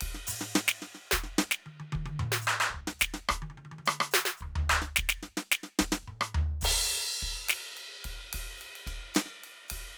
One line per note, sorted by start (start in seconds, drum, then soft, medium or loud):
0.01 kick soft
0.01 ride loud
0.09 kick soft
0.15 snare soft
0.27 hi-hat pedal loud
0.27 mid tom medium
0.41 snare medium
0.56 snare loud
0.68 snare loud
0.82 snare soft
0.95 snare soft
1.11 kick soft
1.11 snare loud
1.20 kick soft
1.20 snare soft
1.39 snare loud
1.51 snare loud
1.66 high tom medium
1.80 high tom medium
1.93 kick soft
1.93 high tom loud
2.01 kick soft
2.06 closed hi-hat soft
2.06 high tom medium
2.16 kick soft
2.16 mid tom loud
2.32 snare medium
2.42 hi-hat pedal medium
2.47 percussion loud
2.60 percussion loud
2.70 kick soft
2.74 floor tom medium
2.87 snare medium
2.99 kick soft
2.99 snare loud
2.99 hi-hat pedal soft
3.14 snare medium
3.29 kick soft
3.29 cross-stick loud
3.29 hi-hat pedal soft
3.42 high tom medium
3.50 high tom soft
3.58 high tom soft
3.65 high tom soft
3.72 high tom medium
3.79 high tom medium
3.86 cross-stick loud
3.86 hi-hat pedal medium
4.01 cross-stick loud
4.11 snare loud
4.11 hi-hat pedal medium
4.26 snare medium
4.37 kick soft
4.37 hi-hat pedal soft
4.42 floor tom medium
4.56 floor tom loud
4.70 kick soft
4.70 percussion loud
4.70 hi-hat pedal soft
4.82 snare medium
4.96 kick soft
4.96 snare loud
5.06 kick soft
5.06 snare loud
5.23 snare soft
5.37 snare medium
5.52 snare loud
5.64 snare soft
5.79 kick soft
5.79 snare loud
5.92 snare loud
6.03 kick soft
6.08 mid tom medium
6.21 cross-stick loud
6.35 floor tom loud
6.61 kick medium
6.61 hi-hat pedal medium
6.61 crash loud
6.70 kick soft
7.21 kick soft
7.21 ride soft
7.28 kick soft
7.49 snare loud
7.49 hi-hat pedal medium
7.49 ride loud
7.75 hi-hat pedal soft
7.75 ride medium
8.05 kick soft
8.05 ride medium
8.33 kick soft
8.33 ride loud
8.57 hi-hat pedal soft
8.57 ride medium
8.76 ride medium
8.87 kick soft
8.87 snare soft
8.87 ride bell medium
8.93 kick soft
9.14 snare loud
9.14 hi-hat pedal medium
9.14 ride bell loud
9.26 snare soft
9.44 ride medium
9.65 snare soft
9.65 hi-hat pedal soft
9.70 kick soft
9.70 ride loud
9.89 snare soft